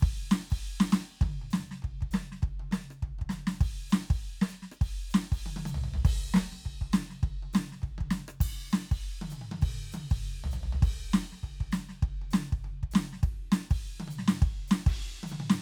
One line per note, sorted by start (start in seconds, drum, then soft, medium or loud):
0.01 kick loud
0.01 crash medium
0.31 snare loud
0.31 hi-hat pedal medium
0.51 kick medium
0.51 crash medium
0.81 snare loud
0.91 snare loud
0.91 hi-hat pedal medium
1.22 kick loud
1.22 high tom loud
1.42 high tom medium
1.51 snare loud
1.51 hi-hat pedal medium
1.51 high tom medium
1.72 snare medium
1.83 kick medium
1.83 high tom medium
2.02 kick medium
2.02 high tom medium
2.12 snare loud
2.12 hi-hat pedal medium
2.12 high tom medium
2.32 snare medium
2.43 kick medium
2.43 high tom medium
2.60 high tom medium
2.72 snare loud
2.72 hi-hat pedal medium
2.72 high tom medium
2.91 cross-stick medium
3.03 kick medium
3.03 high tom medium
3.19 kick medium
3.19 high tom medium
3.30 snare loud
3.30 hi-hat pedal medium
3.30 high tom medium
3.48 snare loud
3.61 kick loud
3.61 crash medium
3.90 snare loud
3.90 hi-hat pedal medium
4.11 kick loud
4.11 crash medium
4.42 snare loud
4.49 hi-hat pedal medium
4.53 snare soft
4.63 snare medium
4.72 cross-stick medium
4.82 kick loud
4.82 crash medium
5.11 hi-hat pedal medium
5.15 snare loud
5.33 kick medium
5.33 crash medium
5.47 high tom loud
5.57 high tom loud
5.66 hi-hat pedal medium
5.66 high tom loud
5.75 floor tom loud
5.84 floor tom loud
5.94 floor tom loud
6.05 kick loud
6.05 crash loud
6.34 snare loud
6.34 hi-hat pedal medium
6.37 snare loud
6.53 snare soft
6.63 kick medium
6.63 hi-hat pedal soft
6.63 high tom medium
6.82 kick medium
6.82 high tom medium
6.93 snare loud
6.93 hi-hat pedal medium
6.93 high tom medium
7.11 snare medium
7.24 kick medium
7.24 high tom medium
7.43 high tom medium
7.54 snare loud
7.54 hi-hat pedal medium
7.54 high tom loud
7.73 snare medium
7.83 kick medium
7.83 high tom medium
7.99 kick medium
7.99 high tom loud
8.11 snare loud
8.11 hi-hat pedal medium
8.11 high tom medium
8.29 cross-stick medium
8.41 kick loud
8.41 crash loud
8.71 snare loud
8.71 hi-hat pedal medium
8.84 snare soft
8.92 kick medium
8.92 crash medium
9.22 high tom loud
9.31 hi-hat pedal medium
9.31 high tom medium
9.42 high tom medium
9.52 high tom loud
9.63 kick loud
9.63 crash medium
9.93 hi-hat pedal medium
9.93 high tom loud
10.11 kick loud
10.11 crash medium
10.45 floor tom loud
10.52 floor tom loud
10.52 hi-hat pedal medium
10.64 floor tom medium
10.73 floor tom loud
10.83 kick loud
10.83 crash medium
11.12 snare loud
11.12 hi-hat pedal medium
11.33 snare soft
11.44 kick medium
11.44 high tom medium
11.61 kick medium
11.61 high tom medium
11.73 snare loud
11.73 hi-hat pedal medium
11.73 high tom medium
11.89 snare medium
12.03 kick loud
12.03 high tom medium
12.22 high tom medium
12.31 snare loud
12.31 hi-hat pedal medium
12.31 high tom loud
12.53 kick medium
12.65 high tom medium
12.84 kick medium
12.92 snare loud
12.92 hi-hat pedal medium
12.92 high tom loud
13.13 snare medium
13.24 kick loud
13.24 ride medium
13.53 snare loud
13.53 hi-hat pedal medium
13.71 kick loud
13.71 crash medium
14.01 high tom loud
14.09 hi-hat pedal medium
14.09 high tom loud
14.19 snare medium
14.29 snare loud
14.40 kick loud
14.40 ride medium
14.68 snare loud
14.68 hi-hat pedal medium
14.87 kick loud
14.87 ride loud
15.24 high tom loud
15.28 hi-hat pedal medium
15.33 high tom loud
15.41 high tom loud
15.51 snare loud